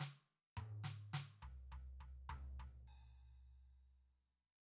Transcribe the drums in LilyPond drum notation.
\new DrumStaff \drummode { \time 4/4 \tempo 4 = 104 <sn hhp>4 tommh8 sn8 sn8 tomfh8 tomfh8 tomfh8 | tomfh8 tomfh8 cymc4 r4 r4 | }